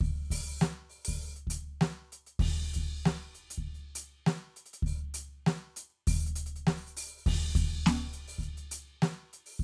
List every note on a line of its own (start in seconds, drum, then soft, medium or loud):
0.01 open hi-hat soft
0.01 kick loud
0.31 open hi-hat loud
0.31 kick medium
0.61 snare loud
0.61 hi-hat pedal soft
0.90 open hi-hat medium
1.05 kick medium
1.05 open hi-hat loud
1.17 kick soft
1.17 open hi-hat soft
1.36 closed hi-hat soft
1.47 closed hi-hat loud
1.47 kick medium
1.67 open hi-hat soft
1.81 snare loud
2.12 closed hi-hat medium
2.27 closed hi-hat soft
2.40 kick loud
2.40 crash medium
2.45 hi-hat pedal soft
2.57 closed hi-hat soft
2.74 closed hi-hat medium
2.74 kick medium
2.89 closed hi-hat soft
3.06 snare loud
3.35 closed hi-hat soft
3.50 closed hi-hat medium
3.58 kick medium
3.75 hi-hat pedal soft
3.80 closed hi-hat soft
3.95 closed hi-hat loud
4.10 closed hi-hat soft
4.27 snare loud
4.56 closed hi-hat medium
4.66 closed hi-hat medium
4.73 closed hi-hat medium
4.83 open hi-hat medium
4.83 kick loud
5.14 closed hi-hat loud
5.33 closed hi-hat soft
5.47 snare loud
5.76 closed hi-hat loud
5.90 closed hi-hat soft
6.07 open hi-hat loud
6.07 kick loud
6.16 open hi-hat soft
6.27 closed hi-hat medium
6.36 closed hi-hat loud
6.46 closed hi-hat medium
6.56 closed hi-hat soft
6.67 snare loud
6.77 open hi-hat soft
6.87 open hi-hat medium
6.97 open hi-hat loud
7.07 open hi-hat medium
7.17 open hi-hat medium
7.26 kick loud
7.26 crash loud
7.55 closed hi-hat medium
7.55 kick loud
7.70 closed hi-hat soft
7.86 snare loud
8.13 closed hi-hat medium
8.28 open hi-hat medium
8.39 kick medium
8.39 hi-hat pedal soft
8.43 closed hi-hat soft
8.57 closed hi-hat soft
8.71 closed hi-hat loud
8.88 closed hi-hat soft
9.02 snare loud
9.33 closed hi-hat medium
9.46 open hi-hat medium
9.60 kick medium